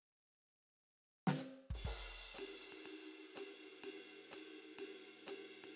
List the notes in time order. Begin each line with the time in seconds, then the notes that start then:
1.27 snare
1.38 hi-hat pedal
1.70 kick, ride
1.84 kick, crash
2.34 hi-hat pedal
2.38 ride
2.72 ride
2.85 ride
3.35 hi-hat pedal, ride
3.83 hi-hat pedal, ride
4.31 hi-hat pedal, ride
4.78 ride
5.26 hi-hat pedal, ride
5.64 ride